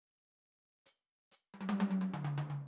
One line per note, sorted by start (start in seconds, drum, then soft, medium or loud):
0.86 hi-hat pedal medium
1.31 hi-hat pedal medium
1.54 high tom medium
1.61 high tom medium
1.69 high tom loud
1.80 high tom loud
1.91 high tom medium
2.01 high tom medium
2.14 mid tom medium
2.24 mid tom medium
2.38 mid tom medium
2.50 mid tom medium